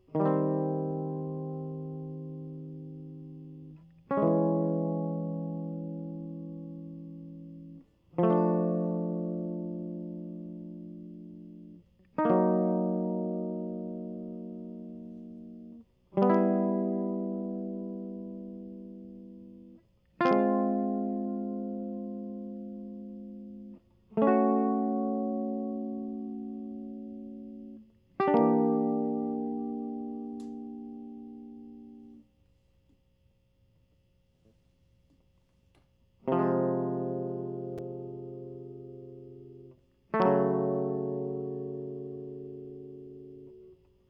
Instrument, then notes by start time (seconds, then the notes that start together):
electric guitar
0.16 D#3
0.21 G3
0.26 C4
4.11 C#4
4.18 G#3
4.23 E3
4.29 B3
8.19 F3
8.24 A3
8.31 D4
12.19 D#4
12.26 A#3
12.31 F#3
16.18 G3
16.23 B3
16.30 E4
20.21 F4
20.26 C4
20.32 G#3
24.18 A3
24.22 C#4
24.28 F#4
28.20 G4
28.28 D4
28.35 A#3
28.41 E3
36.29 C3 F3
36.39 G#3
40.14 A3
40.21 F#3
40.27 C#3